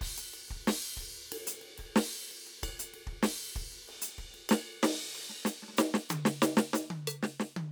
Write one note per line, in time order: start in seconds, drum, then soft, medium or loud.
0.01 kick medium
0.01 crash loud
0.18 closed hi-hat medium
0.34 ride bell medium
0.48 kick soft
0.48 floor tom soft
0.48 ride soft
0.67 snare loud
0.67 crash loud
0.97 kick soft
0.97 ride medium
1.01 cross-stick soft
1.01 floor tom soft
1.16 closed hi-hat soft
1.32 ride loud
1.47 closed hi-hat loud
1.61 ride soft
1.78 kick soft
1.78 ride medium
1.96 snare loud
1.96 crash loud
2.31 ride soft
2.47 closed hi-hat soft
2.63 kick medium
2.63 ride bell loud
2.79 closed hi-hat loud
2.94 ride medium
3.07 kick soft
3.23 snare loud
3.23 crash loud
3.56 kick medium
3.56 ride medium
3.72 closed hi-hat soft
3.88 ride medium
4.02 closed hi-hat loud
4.18 kick soft
4.18 ride soft
4.34 ride soft
4.49 snare loud
4.49 ride bell loud
4.83 snare loud
4.83 ride loud
5.14 crash medium
5.29 snare soft
5.45 snare medium
5.45 hi-hat pedal loud
5.62 snare soft
5.68 snare soft
5.73 snare soft
5.73 hi-hat pedal loud
5.78 snare loud
5.94 snare loud
6.09 hi-hat pedal loud
6.09 high tom loud
6.25 snare loud
6.42 snare loud
6.42 hi-hat pedal loud
6.57 snare loud
6.73 snare loud
6.73 hi-hat pedal loud
6.90 high tom loud
7.07 hi-hat pedal loud
7.07 percussion loud
7.23 snare medium
7.40 snare medium
7.56 high tom loud